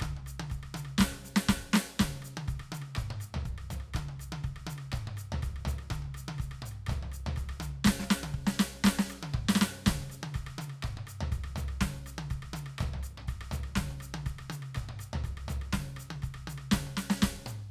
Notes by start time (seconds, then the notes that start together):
0.01 kick, cross-stick, hi-hat pedal, high tom
0.18 high tom
0.27 cross-stick, hi-hat pedal
0.40 high tom
0.51 kick, cross-stick, hi-hat pedal
0.64 cross-stick
0.75 hi-hat pedal, high tom
0.86 cross-stick
0.99 kick, snare, hi-hat pedal
1.01 snare
1.13 cross-stick
1.15 cross-stick
1.23 kick, snare, hi-hat pedal
1.37 snare
1.49 kick, snare, hi-hat pedal
1.74 snare, hi-hat pedal
1.76 snare
2.00 kick, snare, hi-hat pedal, high tom
2.18 high tom
2.23 cross-stick, hi-hat pedal
2.38 high tom
2.49 kick, cross-stick, hi-hat pedal
2.60 cross-stick
2.73 hi-hat pedal, high tom
2.83 cross-stick
2.96 kick, cross-stick, hi-hat pedal, mid tom
3.11 mid tom
3.21 cross-stick, hi-hat pedal
3.35 floor tom
3.46 kick, hi-hat pedal
3.59 cross-stick
3.71 floor tom, hi-hat pedal
3.81 cross-stick
3.95 kick, cross-stick, hi-hat pedal, high tom
4.09 high tom
4.13 high tom
4.20 cross-stick, hi-hat pedal
4.33 high tom
4.45 kick, cross-stick, hi-hat pedal
4.57 cross-stick
4.68 hi-hat pedal, high tom
4.79 cross-stick
4.93 kick, cross-stick, hi-hat pedal, mid tom
5.08 mid tom
5.18 cross-stick, hi-hat pedal
5.33 floor tom
5.43 kick, cross-stick, hi-hat pedal
5.57 cross-stick
5.66 floor tom, hi-hat pedal
5.79 cross-stick
5.91 kick, cross-stick, hi-hat pedal, high tom
6.03 high tom
6.05 high tom
6.15 cross-stick, hi-hat pedal
6.29 high tom
6.39 kick, cross-stick, hi-hat pedal
6.52 cross-stick
6.63 hi-hat pedal, mid tom
6.72 cross-stick
6.87 kick, cross-stick, floor tom, hi-hat pedal
7.03 floor tom
7.13 cross-stick, hi-hat pedal
7.27 floor tom
7.37 kick, cross-stick, hi-hat pedal
7.50 cross-stick
7.61 hi-hat pedal, high tom
7.85 kick, snare, hi-hat pedal
7.88 snare
8.00 snare
8.03 snare
8.11 kick, snare, hi-hat pedal
8.24 high tom
8.35 kick
8.48 snare
8.59 snare, hi-hat pedal
8.85 kick, snare
8.87 snare
9.00 snare
9.08 kick, cross-stick, hi-hat pedal
9.24 high tom
9.35 kick, mid tom
9.49 snare
9.56 snare
9.61 kick, snare, hi-hat pedal
9.86 kick, snare, hi-hat pedal, high tom
10.03 high tom
10.11 cross-stick, hi-hat pedal
10.24 high tom
10.35 kick, cross-stick, hi-hat pedal
10.47 cross-stick
10.59 hi-hat pedal, high tom
10.70 cross-stick
10.83 kick, cross-stick, hi-hat pedal, mid tom
10.98 mid tom
11.08 cross-stick, hi-hat pedal
11.22 floor tom
11.33 kick, cross-stick, hi-hat pedal
11.45 cross-stick
11.57 floor tom, hi-hat pedal
11.69 cross-stick
11.81 kick, snare, hi-hat pedal, high tom
11.95 high tom
12.07 cross-stick, hi-hat pedal
12.19 high tom
12.31 kick, cross-stick, hi-hat pedal
12.43 cross-stick
12.54 hi-hat pedal, high tom
12.67 cross-stick
12.79 kick, cross-stick, floor tom, hi-hat pedal
12.94 floor tom
13.04 cross-stick, hi-hat pedal
13.18 mid tom
13.28 kick, cross-stick, hi-hat pedal
13.42 cross-stick
13.52 floor tom, hi-hat pedal
13.64 cross-stick
13.76 kick, snare, hi-hat pedal, high tom
13.91 high tom
14.01 cross-stick, hi-hat pedal
14.15 high tom
14.27 kick, cross-stick, hi-hat pedal
14.39 cross-stick
14.51 hi-hat pedal, high tom
14.63 cross-stick
14.76 kick, cross-stick, hi-hat pedal, mid tom
14.90 mid tom
15.00 cross-stick, hi-hat pedal
15.14 floor tom
15.25 kick, cross-stick, hi-hat pedal
15.38 cross-stick
15.49 floor tom, hi-hat pedal
15.62 cross-stick
15.73 kick, snare, hi-hat pedal, high tom
15.85 high tom
15.89 high tom
15.97 cross-stick, hi-hat pedal
16.11 high tom
16.23 kick, cross-stick, hi-hat pedal
16.35 cross-stick
16.48 hi-hat pedal, high tom
16.59 cross-stick
16.72 kick, snare, hi-hat pedal, high tom
16.88 high tom
16.98 snare, hi-hat pedal
17.11 snare
17.23 kick, snare, hi-hat pedal
17.47 hi-hat pedal, mid tom